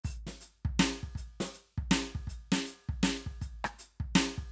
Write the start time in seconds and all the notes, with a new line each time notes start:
0.06 open hi-hat, kick
0.27 snare
0.40 closed hi-hat
0.65 kick
0.79 closed hi-hat, snare
1.03 kick
1.15 closed hi-hat, kick
1.40 snare
1.53 closed hi-hat
1.78 kick
1.90 closed hi-hat, snare
2.15 kick
2.27 closed hi-hat, kick
2.52 snare
2.66 closed hi-hat
2.89 kick
3.03 closed hi-hat, snare
3.26 kick
3.41 closed hi-hat, kick
3.64 cross-stick
3.78 closed hi-hat
4.00 kick
4.15 closed hi-hat, snare
4.38 kick